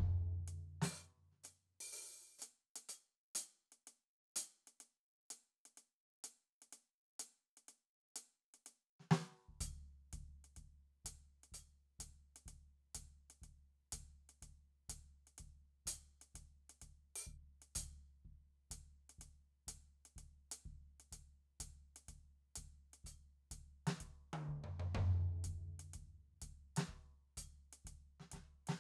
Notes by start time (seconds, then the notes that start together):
0.01 kick
0.48 closed hi-hat
0.82 open hi-hat, snare
1.32 snare
1.44 closed hi-hat, hi-hat pedal
1.81 open hi-hat
1.93 open hi-hat
2.39 closed hi-hat, hi-hat pedal
2.76 closed hi-hat
2.89 closed hi-hat
3.35 closed hi-hat
3.72 closed hi-hat
3.88 closed hi-hat
4.36 closed hi-hat
4.68 closed hi-hat
4.81 closed hi-hat
5.31 closed hi-hat
5.66 closed hi-hat
5.78 closed hi-hat
6.24 closed hi-hat
6.62 closed hi-hat
6.73 closed hi-hat
7.20 closed hi-hat
7.58 closed hi-hat
7.69 closed hi-hat
8.16 closed hi-hat
8.54 closed hi-hat
8.67 closed hi-hat
9.00 snare
9.11 snare
9.49 kick
9.61 closed hi-hat, kick
10.13 kick, closed hi-hat
10.45 closed hi-hat
10.57 kick, closed hi-hat
11.05 kick, closed hi-hat
11.44 closed hi-hat
11.52 closed hi-hat, kick
12.00 kick, closed hi-hat
12.36 closed hi-hat
12.46 kick, closed hi-hat
12.95 kick, closed hi-hat
13.30 closed hi-hat
13.42 kick, closed hi-hat
13.93 kick, closed hi-hat
14.29 closed hi-hat
14.43 kick, closed hi-hat
14.89 kick, closed hi-hat
15.27 closed hi-hat
15.38 kick, closed hi-hat
15.86 closed hi-hat, kick
16.22 closed hi-hat
16.35 kick, closed hi-hat
16.70 closed hi-hat
16.82 kick, closed hi-hat
17.16 open hi-hat
17.22 hi-hat pedal
17.27 kick
17.62 closed hi-hat
17.76 open hi-hat, kick
18.25 kick
18.71 kick, closed hi-hat
19.10 closed hi-hat
19.19 kick, closed hi-hat
19.68 kick, closed hi-hat
20.06 closed hi-hat
20.16 kick, closed hi-hat
20.52 open hi-hat
20.66 kick
21.00 closed hi-hat
21.12 kick, closed hi-hat
21.60 kick, closed hi-hat
21.96 closed hi-hat
22.09 kick, closed hi-hat
22.56 kick, closed hi-hat
22.94 closed hi-hat
23.05 closed hi-hat, kick
23.52 kick, closed hi-hat
23.87 snare, closed hi-hat
24.01 kick, closed hi-hat
24.34 high tom
24.49 kick
24.64 floor tom
24.80 floor tom
24.95 kick, floor tom
25.45 kick, closed hi-hat
25.80 closed hi-hat
25.94 kick, closed hi-hat
26.42 kick, closed hi-hat
26.77 snare, closed hi-hat
26.89 kick
27.38 closed hi-hat, kick
27.73 closed hi-hat
27.85 kick, closed hi-hat
28.20 snare
28.32 kick, snare, closed hi-hat
28.68 snare, closed hi-hat